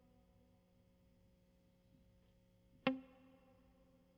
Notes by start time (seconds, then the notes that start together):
2.87 C4